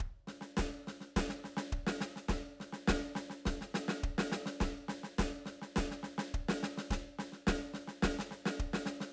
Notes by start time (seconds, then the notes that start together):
0.00 kick
0.27 snare
0.41 snare
0.57 kick, snare
0.87 snare
1.00 snare
1.16 kick, snare
1.29 snare
1.44 snare
1.57 snare
1.72 kick
1.87 snare
2.01 snare
2.16 snare
2.28 kick, snare
2.60 snare
2.73 snare
2.88 kick, snare
3.15 snare
3.30 snare
3.45 kick, snare
3.61 snare
3.74 snare
3.88 snare
4.03 kick
4.18 snare
4.32 snare
4.46 snare
4.60 kick, snare
4.88 snare
5.03 snare
5.18 kick, snare
5.46 snare
5.62 snare
5.76 kick, snare
5.91 snare
6.03 snare
6.18 snare
6.34 kick
6.49 snare, open hi-hat
6.63 snare
6.78 snare
6.90 kick, snare
7.19 snare
7.32 snare
7.47 kick, snare
7.74 snare
7.88 snare
8.03 kick, snare
8.19 snare
8.31 snare
8.46 snare
8.60 kick
8.73 snare
8.86 snare
9.00 snare